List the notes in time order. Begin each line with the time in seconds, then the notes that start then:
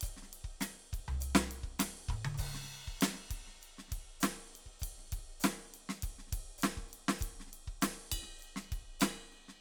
0.01 kick, hi-hat pedal, ride
0.09 kick
0.17 snare
0.22 snare
0.26 snare
0.33 ride
0.44 kick
0.60 snare, hi-hat pedal, ride
0.93 kick, ride
0.99 kick
1.08 floor tom
1.20 hi-hat pedal, ride
1.35 snare
1.51 ride
1.63 kick
1.79 snare, hi-hat pedal, ride
2.08 kick, mid tom
2.25 high tom
2.34 hi-hat pedal, high tom
2.39 kick, crash
2.45 kick
2.54 snare
2.63 snare
2.87 kick
3.01 snare, hi-hat pedal, ride
3.14 snare
3.30 kick, ride
3.36 kick
3.47 snare
3.61 hi-hat pedal, ride
3.78 snare
3.88 kick, snare, ride
3.98 kick
4.20 snare, hi-hat pedal, ride
4.55 ride
4.66 kick, snare
4.79 kick, snare, hi-hat pedal
4.83 ride
4.92 kick
4.98 snare
5.01 snare
5.04 snare
5.12 kick, ride
5.18 kick
5.40 hi-hat pedal, ride
5.44 snare
5.74 ride
5.89 snare
6.02 kick, hi-hat pedal, ride
6.10 kick
6.18 snare
6.27 snare
6.32 kick, ride
6.39 kick
6.58 hi-hat pedal
6.62 snare, ride
6.77 kick, snare
6.82 kick
6.88 hi-hat pedal
6.93 ride
7.08 snare
7.18 kick, hi-hat pedal
7.22 ride
7.28 kick
7.40 snare
7.46 snare
7.53 ride
7.67 kick
7.82 snare, hi-hat pedal, ride
7.92 snare
8.12 kick, ride bell
8.19 kick, snare
8.39 hi-hat pedal, ride
8.56 snare
8.72 kick, ride
8.78 kick
8.82 kick
9.00 snare, hi-hat pedal, ride bell
9.32 ride
9.48 snare